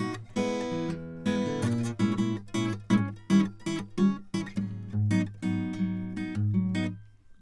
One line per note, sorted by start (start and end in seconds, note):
0.00 0.12 B2
0.00 0.16 A#3
0.00 0.20 D#4
0.00 0.21 F#4
0.32 0.44 B2
0.37 0.63 G#3
0.37 1.01 B3
0.37 0.99 E4
0.73 1.00 E3
0.91 1.61 E2
1.27 1.40 G#3
1.27 1.68 B3
1.27 1.70 E4
1.47 1.71 D3
1.64 1.94 A#2
2.00 2.21 A#2
2.00 2.17 G#3
2.00 2.17 C#4
2.00 2.16 E4
2.19 2.37 A#2
2.19 2.43 G#3
2.19 2.42 C#4
2.19 2.43 E4
2.55 2.77 A#2
2.55 2.77 G#3
2.55 2.76 C#4
2.55 2.79 E4
2.91 3.05 A#2
2.91 3.05 G#3
2.91 3.12 C#4
2.91 3.02 E4
3.31 3.51 D#3
3.31 3.51 G3
3.31 3.50 C#4
3.31 3.49 E4
3.67 3.86 D#3
3.67 3.83 G3
3.67 3.86 C#4
3.67 3.85 E4
3.99 4.21 D#3
3.99 4.15 G3
3.99 4.21 C#4
3.99 4.13 F4
4.35 4.49 D#3
4.35 4.48 G3
4.35 4.49 C#4
4.35 4.46 E4
4.53 4.67 G#2
4.58 4.89 F#3
4.58 4.94 B3
4.58 4.68 D4
4.94 5.28 G#2
5.12 5.30 F#3
5.12 5.31 B3
5.12 5.32 D#4
5.44 6.35 G#2
5.44 5.78 F#3
5.44 5.74 B3
5.44 6.16 D#4
5.75 6.16 B3
5.80 6.41 F#3
6.18 6.40 B3
6.18 6.39 D#4
6.37 6.96 G#2
6.55 7.00 F#3
6.76 6.98 B3
6.76 6.94 D#4